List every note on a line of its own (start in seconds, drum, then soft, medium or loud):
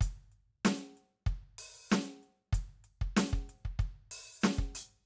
0.01 kick medium
0.01 closed hi-hat loud
0.32 closed hi-hat soft
0.65 snare loud
0.65 closed hi-hat loud
0.97 closed hi-hat soft
1.27 kick medium
1.27 closed hi-hat soft
1.59 open hi-hat loud
1.90 snare loud
1.90 closed hi-hat soft
1.90 hi-hat pedal medium
2.23 closed hi-hat soft
2.53 kick medium
2.53 closed hi-hat medium
2.84 closed hi-hat soft
3.02 kick medium
3.17 closed hi-hat loud
3.17 snare loud
3.33 kick medium
3.50 closed hi-hat soft
3.65 kick soft
3.79 kick medium
3.79 closed hi-hat soft
4.12 open hi-hat loud
4.42 snare loud
4.42 closed hi-hat soft
4.42 hi-hat pedal medium
4.59 kick medium
4.75 closed hi-hat loud